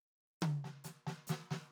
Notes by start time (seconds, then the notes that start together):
0.41 hi-hat pedal, high tom
0.64 snare
0.84 snare, hi-hat pedal
1.06 snare
1.27 snare, hi-hat pedal
1.51 snare